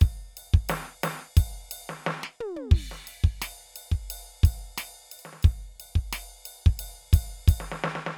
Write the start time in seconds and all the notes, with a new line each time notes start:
0.01 kick, ride
0.37 ride
0.54 kick
0.69 snare, ride
1.04 snare, ride
1.37 kick, ride
1.71 ride
1.89 snare
2.07 snare
2.23 snare
2.40 mid tom
2.56 high tom
2.71 kick, crash
2.92 snare
3.07 ride
3.24 kick
3.42 snare, ride
3.76 ride
3.92 kick
4.10 ride
4.44 kick, ride
4.78 snare, ride
5.12 ride
5.19 ride
5.25 snare
5.33 snare
5.43 kick, ride
5.80 ride
5.96 kick
6.13 snare, ride
6.46 ride
6.66 kick
6.79 ride
7.13 kick, ride
7.48 kick, ride
7.60 snare
7.72 snare
7.84 snare
7.95 snare
8.07 snare